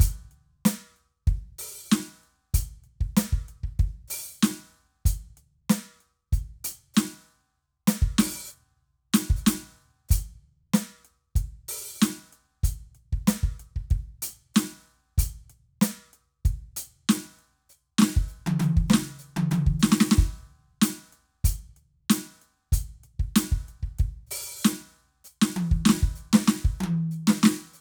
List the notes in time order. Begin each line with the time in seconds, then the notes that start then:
0.01 closed hi-hat, kick
0.32 closed hi-hat
0.66 closed hi-hat, snare
0.97 closed hi-hat
1.28 kick, closed hi-hat
1.60 open hi-hat
1.92 snare, closed hi-hat, hi-hat pedal
2.24 closed hi-hat
2.55 closed hi-hat, kick
2.85 closed hi-hat
3.02 kick
3.18 closed hi-hat, snare
3.34 kick
3.49 closed hi-hat
3.64 kick
3.80 kick, closed hi-hat
4.09 open hi-hat, hi-hat pedal
4.44 closed hi-hat, snare, hi-hat pedal
5.06 closed hi-hat, kick
5.38 closed hi-hat
5.71 closed hi-hat, snare
6.02 closed hi-hat
6.34 closed hi-hat, kick
6.66 open hi-hat
6.95 closed hi-hat, snare, hi-hat pedal
7.89 open hi-hat, snare
8.03 kick
8.19 open hi-hat, snare
8.49 hi-hat pedal
9.14 closed hi-hat, snare, hi-hat pedal
9.31 kick
9.38 hi-hat pedal
9.48 closed hi-hat, snare
10.10 closed hi-hat, kick, hi-hat pedal
10.75 closed hi-hat, snare
11.06 closed hi-hat
11.37 kick, closed hi-hat
11.69 open hi-hat
12.02 closed hi-hat, snare, hi-hat pedal
12.34 closed hi-hat
12.64 closed hi-hat, kick
12.96 closed hi-hat
13.14 kick
13.29 closed hi-hat, snare
13.44 kick
13.61 closed hi-hat
13.77 kick
13.91 kick, closed hi-hat
14.23 open hi-hat
14.56 closed hi-hat, snare, hi-hat pedal
15.19 closed hi-hat, kick
15.51 closed hi-hat
15.83 closed hi-hat, snare
16.14 closed hi-hat
16.46 kick, closed hi-hat
16.78 open hi-hat
17.10 open hi-hat, snare, hi-hat pedal
17.40 closed hi-hat
17.71 hi-hat pedal
18.00 snare, hi-hat pedal
18.03 snare
18.18 kick
18.29 hi-hat pedal
18.48 mid tom, high tom
18.61 hi-hat pedal, mid tom, high tom
18.78 kick
18.89 snare, hi-hat pedal
18.95 snare
19.20 hi-hat pedal
19.38 mid tom, high tom
19.52 hi-hat pedal, mid tom, high tom
19.68 kick
19.81 snare, hi-hat pedal
19.93 snare
20.01 snare
20.12 snare
20.19 kick
20.83 closed hi-hat, snare
21.14 closed hi-hat
21.45 closed hi-hat, kick
21.78 closed hi-hat
22.11 closed hi-hat, snare
22.43 closed hi-hat
22.73 closed hi-hat, kick
23.05 closed hi-hat
23.21 kick
23.37 closed hi-hat, snare
23.53 kick
23.69 closed hi-hat
23.84 kick
24.00 kick, closed hi-hat
24.28 hi-hat pedal
24.32 open hi-hat
24.66 open hi-hat, snare, hi-hat pedal
25.26 hi-hat pedal
25.43 snare
25.55 hi-hat pedal, high tom
25.72 kick
25.86 snare, hi-hat pedal
25.90 snare
26.04 kick
26.16 hi-hat pedal
26.34 snare
26.49 snare, hi-hat pedal
26.66 kick
26.79 hi-hat pedal, high tom
26.85 high tom
27.04 high tom
27.12 hi-hat pedal
27.28 snare
27.30 snare
27.44 snare
27.46 snare
27.75 hi-hat pedal